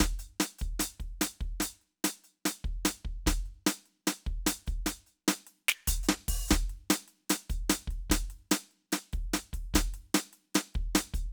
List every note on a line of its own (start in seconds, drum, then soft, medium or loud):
0.01 closed hi-hat medium
0.01 kick medium
0.01 snare loud
0.19 closed hi-hat soft
0.40 closed hi-hat medium
0.40 snare loud
0.58 closed hi-hat soft
0.58 kick medium
0.79 closed hi-hat loud
0.79 snare medium
1.00 kick soft
1.00 closed hi-hat soft
1.21 closed hi-hat loud
1.21 snare medium
1.41 kick soft
1.41 closed hi-hat soft
1.60 closed hi-hat loud
1.60 snare medium
1.81 closed hi-hat soft
2.04 closed hi-hat loud
2.04 snare loud
2.24 closed hi-hat soft
2.45 closed hi-hat loud
2.45 snare medium
2.64 kick medium
2.64 closed hi-hat soft
2.85 closed hi-hat loud
2.85 snare loud
3.05 kick soft
3.26 closed hi-hat medium
3.26 kick medium
3.26 snare loud
3.46 closed hi-hat soft
3.66 closed hi-hat medium
3.66 snare loud
3.85 closed hi-hat soft
4.07 closed hi-hat medium
4.07 snare loud
4.26 kick medium
4.26 closed hi-hat soft
4.46 closed hi-hat loud
4.46 snare loud
4.67 closed hi-hat soft
4.67 kick medium
4.86 closed hi-hat medium
4.86 snare medium
5.06 closed hi-hat soft
5.28 closed hi-hat medium
5.28 snare loud
5.47 closed hi-hat soft
5.68 snare loud
5.87 closed hi-hat loud
5.87 kick medium
6.03 hi-hat pedal medium
6.09 snare loud
6.28 kick medium
6.28 open hi-hat loud
6.48 closed hi-hat medium
6.48 kick medium
6.48 snare loud
6.48 hi-hat pedal medium
6.69 closed hi-hat soft
6.90 closed hi-hat loud
6.90 snare loud
7.08 closed hi-hat soft
7.29 closed hi-hat loud
7.29 snare loud
7.49 closed hi-hat soft
7.49 kick medium
7.69 closed hi-hat loud
7.69 snare loud
7.87 kick soft
7.87 closed hi-hat soft
8.10 closed hi-hat loud
8.10 kick medium
8.10 snare loud
8.30 closed hi-hat soft
8.51 closed hi-hat loud
8.51 snare loud
8.71 closed hi-hat soft
8.92 closed hi-hat medium
8.92 snare medium
9.13 kick medium
9.13 closed hi-hat soft
9.33 closed hi-hat medium
9.33 snare medium
9.53 kick soft
9.53 closed hi-hat soft
9.74 closed hi-hat loud
9.74 kick medium
9.74 snare loud
9.94 closed hi-hat soft
10.14 closed hi-hat loud
10.14 snare loud
10.33 closed hi-hat soft
10.54 closed hi-hat medium
10.54 snare loud
10.74 kick medium
10.74 closed hi-hat soft
10.95 closed hi-hat loud
10.95 snare loud
11.14 closed hi-hat soft
11.14 kick medium